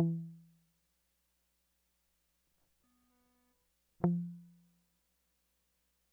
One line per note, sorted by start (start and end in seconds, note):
0.00 0.61 E3
0.00 0.35 E3
4.04 4.80 F3